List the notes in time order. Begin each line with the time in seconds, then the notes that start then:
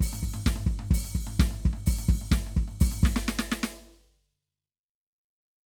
0.01 open hi-hat, kick
0.13 floor tom
0.23 kick
0.34 floor tom
0.47 kick, snare
0.56 floor tom
0.67 kick
0.79 floor tom
0.85 kick
0.91 open hi-hat, kick
1.05 floor tom
1.15 kick
1.27 floor tom
1.40 kick, snare
1.51 floor tom
1.66 kick
1.73 floor tom
1.87 open hi-hat, kick
1.99 floor tom
2.09 kick
2.22 floor tom
2.32 kick, snare
2.47 floor tom
2.57 kick
2.68 floor tom
2.81 open hi-hat, kick
2.92 floor tom
3.04 kick, snare
3.16 snare
3.29 snare
3.39 snare
3.52 snare
3.64 snare, hi-hat pedal